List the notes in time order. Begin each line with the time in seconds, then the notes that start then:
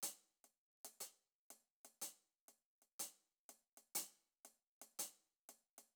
0.03 closed hi-hat
0.44 closed hi-hat
0.85 closed hi-hat
1.00 closed hi-hat
1.50 closed hi-hat
1.85 closed hi-hat
2.01 closed hi-hat
2.48 closed hi-hat
2.82 closed hi-hat
2.99 closed hi-hat
3.49 closed hi-hat
3.77 closed hi-hat
3.95 closed hi-hat
4.45 closed hi-hat
4.81 closed hi-hat
4.99 closed hi-hat
5.49 closed hi-hat
5.78 closed hi-hat